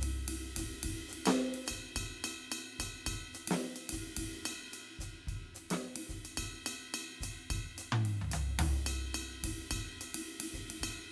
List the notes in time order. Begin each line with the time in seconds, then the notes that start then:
0.01 hi-hat pedal, ride
0.28 ride
0.57 kick, hi-hat pedal, ride
0.83 kick, ride
0.91 kick
1.09 hi-hat pedal
1.13 ride
1.26 snare, ride bell
1.54 ride
1.67 hi-hat pedal, ride bell
1.71 kick
1.96 kick, ride bell
2.24 hi-hat pedal, ride bell
2.52 ride bell
2.79 kick, hi-hat pedal, ride bell
3.07 kick, ride bell
3.34 hi-hat pedal, ride bell
3.48 snare, ride
3.76 ride bell
3.90 kick, hi-hat pedal, ride
4.17 kick, ride
4.46 hi-hat pedal, ride bell
4.74 ride bell
4.99 kick, hi-hat pedal, ride bell
5.28 kick, ride bell
5.36 kick
5.55 hi-hat pedal, ride
5.71 snare, ride bell
5.96 ride
6.09 kick, hi-hat pedal
6.25 ride bell
6.38 kick, ride bell
6.67 hi-hat pedal, ride bell
6.94 ride bell
7.21 kick, hi-hat pedal, ride bell
7.50 kick, cross-stick, ride bell
7.57 kick
7.60 kick
7.78 hi-hat pedal, ride bell
7.93 mid tom
8.06 ride
8.22 floor tom
8.32 hi-hat pedal, ride bell, floor tom
8.59 ride, floor tom
8.87 hi-hat pedal, ride bell
9.15 ride bell
9.44 kick, hi-hat pedal, ride
9.71 kick, ride bell
9.78 kick
10.01 hi-hat pedal, ride bell
10.15 ride
10.41 ride
10.54 kick, hi-hat pedal
10.70 ride
10.81 kick, ride bell